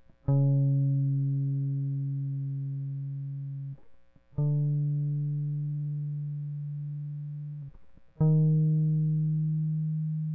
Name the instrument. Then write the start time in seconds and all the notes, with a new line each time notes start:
electric guitar
0.30 C#3
4.40 D3
8.22 D#3